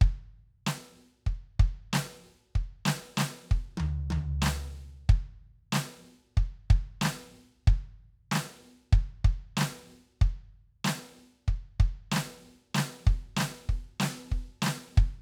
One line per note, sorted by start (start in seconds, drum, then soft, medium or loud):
0.01 kick loud
0.67 snare loud
1.26 kick medium
1.60 kick loud
1.93 snare loud
1.95 snare loud
2.55 kick medium
2.85 snare loud
2.88 snare loud
3.17 snare loud
3.20 snare loud
3.51 kick loud
3.77 floor tom loud
3.77 high tom loud
4.10 floor tom loud
4.10 high tom loud
4.42 snare loud
4.46 snare loud
5.09 kick loud
5.72 snare loud
5.75 snare loud
6.37 kick loud
6.70 kick loud
7.01 snare loud
7.05 snare loud
7.67 kick loud
8.32 snare loud
8.35 snare loud
8.93 kick loud
9.25 kick loud
9.57 snare loud
9.61 snare loud
10.21 kick loud
10.84 snare loud
10.88 snare loud
11.48 kick medium
11.80 kick loud
12.12 snare loud
12.16 snare loud
12.75 snare loud
12.78 snare loud
13.07 kick loud
13.37 snare loud
13.40 snare loud
13.69 kick medium
14.00 snare loud
14.03 snare loud
14.32 kick medium
14.62 snare loud
14.66 snare loud
14.97 kick loud